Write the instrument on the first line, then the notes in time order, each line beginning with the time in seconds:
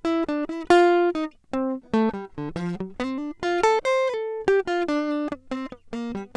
acoustic guitar
0.07 E4
0.31 D4
0.52 E4
0.72 F4
1.17 D#4
1.55 C4
1.96 A3
2.17 G3
2.40 D3
2.58 F3
2.83 F#3
3.02 C4
3.20 D4
3.45 F4
3.66 A4
3.87 C5
4.16 A4
4.50 G4
4.70 F4
4.91 D4
5.34 C#4
5.54 C4
5.75 B3
5.95 A#3
6.17 G3